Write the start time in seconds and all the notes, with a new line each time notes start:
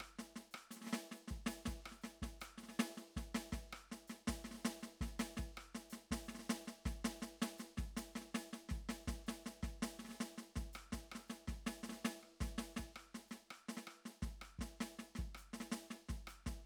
0.01 cross-stick
0.19 snare
0.36 snare
0.52 cross-stick, hi-hat pedal
0.71 snare, hi-hat pedal
0.77 snare
0.82 snare
0.85 snare
0.87 snare
0.93 snare, hi-hat pedal
1.12 snare, hi-hat pedal
1.28 kick, snare
1.47 snare, hi-hat pedal
1.66 kick, snare
1.86 cross-stick
1.92 snare
2.02 snare, hi-hat pedal
2.23 kick, snare
2.42 cross-stick, hi-hat pedal
2.58 snare
2.64 snare
2.69 snare
2.80 snare, hi-hat pedal
2.98 snare
3.17 kick, snare
3.35 snare, hi-hat pedal
3.53 kick, snare
3.73 cross-stick
3.92 snare
4.08 snare, hi-hat pedal
4.28 kick, snare
4.45 snare
4.52 snare
4.55 snare
4.65 snare
4.83 snare, hi-hat pedal
5.02 kick, snare
5.20 snare, hi-hat pedal
5.38 kick, snare
5.58 cross-stick
5.75 snare
5.91 snare, hi-hat pedal
6.12 kick, snare
6.26 snare, hi-hat pedal
6.35 snare
6.40 snare
6.50 snare
6.68 snare
6.86 kick, snare
7.05 snare
7.23 snare
7.42 snare
7.59 snare, hi-hat pedal
7.78 kick, snare
7.97 snare, hi-hat pedal
8.16 snare
8.22 snare
8.35 snare, hi-hat pedal
8.54 snare
8.70 kick, snare
8.90 snare, hi-hat pedal
9.08 kick, snare
9.27 snare, hi-hat pedal
9.47 snare
9.64 kick, snare
9.83 snare
10.00 snare
10.05 snare
10.09 snare
10.11 snare
10.21 snare
10.38 snare
10.56 kick, snare
10.74 cross-stick, hi-hat pedal
10.93 kick, snare
11.12 cross-stick, snare
11.29 snare, hi-hat pedal
11.48 kick, snare
11.67 snare, hi-hat pedal
11.84 snare
11.90 snare
11.93 snare
12.05 snare
12.24 cross-stick
12.41 kick, snare
12.59 snare
12.64 hi-hat pedal
12.77 kick, snare
12.97 cross-stick
13.15 snare
13.28 snare, hi-hat pedal
13.51 cross-stick
13.69 snare
13.78 snare
13.88 cross-stick
14.06 snare
14.23 kick, snare
14.42 cross-stick, hi-hat pedal
14.60 kick, snare
14.81 snare
14.99 snare
15.16 kick, snare
15.35 cross-stick, hi-hat pedal
15.54 snare
15.61 snare
15.72 snare
15.91 snare
16.09 kick, snare
16.28 cross-stick, hi-hat pedal
16.47 kick, snare